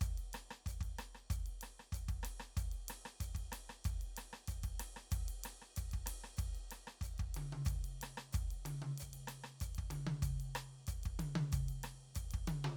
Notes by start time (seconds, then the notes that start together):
0.01 kick, hi-hat pedal, ride
0.18 ride
0.33 cross-stick, ride
0.51 cross-stick
0.66 kick, hi-hat pedal, ride
0.81 kick, ride
0.99 cross-stick, ride
1.15 cross-stick
1.30 kick, hi-hat pedal, ride
1.46 ride
1.61 cross-stick, ride
1.80 cross-stick
1.92 kick, hi-hat pedal, ride
2.09 kick, ride
2.23 cross-stick, ride
2.40 cross-stick
2.57 kick, hi-hat pedal, ride
2.72 ride
2.89 cross-stick, ride
3.05 cross-stick
3.20 kick, hi-hat pedal, ride
3.35 kick, ride
3.52 cross-stick, ride
3.70 cross-stick
3.85 kick, hi-hat pedal, ride
4.01 ride
4.17 cross-stick, ride
4.33 cross-stick
4.48 kick, hi-hat pedal, ride
4.64 kick, ride
4.80 cross-stick, ride
4.96 cross-stick
5.11 kick, hi-hat pedal, ride
5.28 ride
5.44 cross-stick, ride
5.62 cross-stick
5.76 kick, hi-hat pedal, ride
5.92 kick, ride
6.06 cross-stick, ride
6.24 cross-stick
6.37 kick, hi-hat pedal, ride
6.55 ride
6.71 cross-stick, ride
6.87 cross-stick
7.01 kick, hi-hat pedal, ride
7.18 kick, ride
7.35 high tom, ride
7.53 high tom
7.65 kick, hi-hat pedal, ride
7.84 ride
8.02 cross-stick, ride
8.18 cross-stick
8.33 kick, hi-hat pedal, ride
8.51 ride
8.65 high tom, ride
8.82 high tom
8.98 hi-hat pedal, ride
9.02 kick
9.13 ride
9.28 cross-stick, ride
9.44 cross-stick
9.61 kick, hi-hat pedal, ride
9.75 kick, ride
9.91 high tom, ride
10.07 high tom
10.22 kick, hi-hat pedal, ride
10.40 ride
10.55 cross-stick, ride
10.87 kick, hi-hat pedal, ride
11.04 kick, ride
11.19 high tom, ride
11.36 high tom
11.52 kick, hi-hat pedal, ride
11.69 ride
11.84 cross-stick, ride
12.15 kick, hi-hat pedal, ride
12.31 kick, ride
12.48 high tom, ride
12.64 high tom